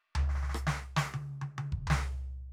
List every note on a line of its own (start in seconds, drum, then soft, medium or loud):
0.15 floor tom loud
0.29 snare soft
0.35 snare soft
0.42 snare soft
0.49 snare soft
0.54 cross-stick medium
0.67 snare loud
0.96 snare loud
1.14 high tom loud
1.41 high tom medium
1.58 high tom loud
1.72 kick medium
1.87 snare loud
1.87 floor tom loud